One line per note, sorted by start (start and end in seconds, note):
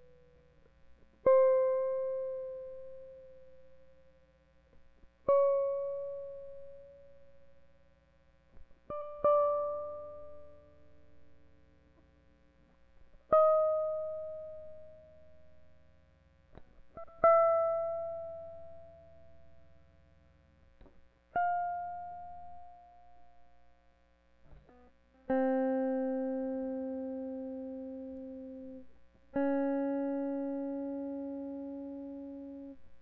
1.27 3.52 C5
5.29 7.06 C#5
8.91 10.61 D5
9.25 10.61 D5
13.33 15.23 D#5
17.24 19.27 E5
21.36 23.21 F5
25.30 28.84 C4
29.37 32.75 C#4